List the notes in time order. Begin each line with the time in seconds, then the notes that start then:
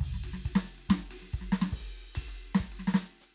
0.01 kick, crash
0.14 snare
0.24 ride
0.34 snare
0.46 kick, ride
0.56 snare
0.68 ride
0.79 ride
0.90 kick, snare
1.11 ride
1.22 snare
1.34 kick, ride
1.41 snare
1.53 snare
1.62 snare
1.73 kick, crash
1.86 closed hi-hat
2.05 closed hi-hat
2.16 kick, ride bell
2.29 ride bell
2.55 snare
2.60 kick
2.72 ride
2.80 snare
2.88 snare
2.95 snare
3.21 hi-hat pedal